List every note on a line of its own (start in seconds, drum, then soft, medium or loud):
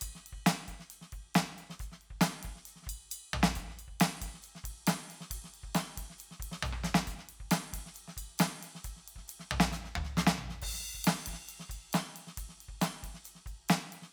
0.01 kick soft
0.01 hi-hat pedal medium
0.01 ride bell medium
0.08 kick soft
0.15 snare soft
0.26 ride medium
0.32 kick soft
0.38 kick soft
0.46 snare loud
0.46 hi-hat pedal soft
0.46 ride bell medium
0.54 snare soft
0.68 kick soft
0.68 ride bell soft
0.79 snare soft
0.90 hi-hat pedal soft
0.90 ride medium
1.01 snare soft
1.12 kick soft
1.12 ride soft
1.34 snare loud
1.34 hi-hat pedal medium
1.34 ride medium
1.34 floor tom soft
1.58 ride bell soft
1.69 snare medium
1.79 kick soft
1.79 snare soft
1.79 hi-hat pedal medium
1.79 ride soft
1.86 kick soft
1.92 snare soft
2.01 ride soft
2.10 kick soft
2.16 kick soft
2.21 snare loud
2.21 hi-hat pedal medium
2.21 ride loud
2.43 kick soft
2.43 ride medium
2.50 kick soft
2.55 snare soft
2.65 hi-hat pedal medium
2.65 ride medium
2.75 snare soft
2.82 snare soft
2.86 kick soft
2.86 ride bell medium
2.93 kick soft
3.10 hi-hat pedal medium
3.10 ride bell medium
3.33 floor tom loud
3.43 snare loud
3.55 kick soft
3.55 hi-hat pedal soft
3.55 ride bell medium
3.66 kick soft
3.66 snare soft
3.75 snare soft
3.75 ride bell soft
3.88 kick soft
3.93 kick soft
4.00 snare loud
4.00 hi-hat pedal medium
4.00 ride loud
4.11 snare soft
4.21 kick soft
4.21 ride bell medium
4.28 kick soft
4.34 snare soft
4.42 hi-hat pedal medium
4.42 ride soft
4.55 snare soft
4.64 kick soft
4.64 ride medium
4.71 kick soft
4.87 snare loud
4.87 hi-hat pedal medium
4.87 ride loud
5.10 ride soft
5.20 snare soft
5.30 kick soft
5.30 hi-hat pedal medium
5.30 ride loud
5.37 kick soft
5.44 snare soft
5.54 ride soft
5.63 kick soft
5.69 kick soft
5.75 snare loud
5.75 hi-hat pedal medium
5.75 ride loud
5.97 kick soft
5.97 ride medium
6.03 kick soft
6.10 snare soft
6.18 hi-hat pedal soft
6.18 ride medium
6.31 snare soft
6.39 kick soft
6.39 ride medium
6.46 kick soft
6.51 snare medium
6.62 hi-hat pedal soft
6.62 floor tom loud
6.72 cross-stick medium
6.83 snare loud
6.94 snare loud
7.07 kick soft
7.07 hi-hat pedal medium
7.07 ride bell soft
7.14 kick soft
7.18 kick soft
7.18 snare soft
7.29 ride medium
7.40 kick soft
7.45 kick soft
7.51 snare loud
7.51 hi-hat pedal medium
7.51 ride loud
7.73 kick soft
7.73 ride medium
7.79 kick soft
7.86 snare soft
7.94 hi-hat pedal medium
7.94 ride medium
8.08 snare soft
8.17 kick soft
8.17 ride bell medium
8.22 kick soft
8.38 snare loud
8.38 hi-hat pedal medium
8.38 ride loud
8.63 ride medium
8.75 snare soft
8.84 kick soft
8.84 hi-hat pedal medium
8.84 ride medium
8.91 kick soft
8.96 snare soft
9.08 ride medium
9.15 kick soft
9.15 snare soft
9.21 kick soft
9.28 hi-hat pedal medium
9.28 ride medium
9.39 snare soft
9.51 floor tom loud
9.60 snare loud
9.72 snare medium
9.72 hi-hat pedal medium
9.84 snare soft
9.95 kick soft
9.95 mid tom loud
10.03 kick soft
10.03 snare soft
10.17 snare loud
10.17 hi-hat pedal medium
10.27 snare loud
10.34 snare soft
10.34 floor tom medium
10.49 snare soft
10.61 kick medium
10.61 hi-hat pedal soft
10.61 crash loud
10.69 kick soft
10.69 snare soft
10.74 kick soft
10.79 snare soft
10.94 kick soft
11.04 snare loud
11.04 hi-hat pedal medium
11.04 ride loud
11.26 kick soft
11.26 ride medium
11.33 kick soft
11.33 snare soft
11.47 hi-hat pedal soft
11.47 ride medium
11.59 snare soft
11.69 kick soft
11.69 ride bell medium
11.76 kick soft
11.92 snare loud
11.92 hi-hat pedal medium
11.92 ride loud
12.16 ride medium
12.27 snare soft
12.37 kick soft
12.37 hi-hat pedal medium
12.37 ride medium
12.44 kick soft
12.49 snare soft
12.56 snare soft
12.60 ride soft
12.68 kick soft
12.74 kick soft
12.81 snare loud
12.81 hi-hat pedal medium
12.81 ride loud
13.03 kick soft
13.03 ride medium
13.09 kick soft
13.14 snare soft
13.24 hi-hat pedal medium
13.24 ride medium
13.35 snare soft
13.46 kick soft
13.46 ride bell soft
13.52 kick soft
13.68 snare loud
13.68 hi-hat pedal medium
13.68 ride medium
13.92 ride medium
14.02 snare soft